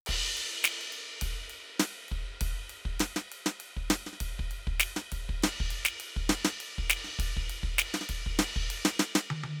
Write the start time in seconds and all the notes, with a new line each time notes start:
0.06 kick, ride
0.23 ride
0.37 ride
0.64 snare, ride
0.81 ride
0.92 ride
1.21 kick, ride
1.50 ride
1.79 snare, ride
2.08 kick, ride
2.41 kick, ride
2.69 ride
2.85 kick
3.00 snare, ride
3.16 snare
3.32 ride
3.46 snare
3.60 ride
3.77 kick
3.90 snare, ride
4.06 snare
4.13 snare
4.20 kick, ride
4.39 kick
4.51 ride
4.67 kick
4.80 snare, ride
4.96 snare
5.12 kick, ride
5.29 kick
5.42 snare, ride
5.60 kick
5.71 ride
5.85 snare
6.00 ride
6.17 kick
6.29 snare, ride
6.45 snare
6.60 ride
6.78 kick
6.90 snare, ride
7.04 snare
7.08 snare
7.13 snare
7.19 kick, ride
7.37 kick
7.50 ride
7.63 kick
7.78 snare, ride
7.94 snare
8.01 snare
8.09 kick, ride
8.26 kick
8.39 snare, ride
8.56 kick
8.70 ride
8.76 kick
8.85 snare
8.99 snare
9.15 snare
9.30 high tom
9.44 high tom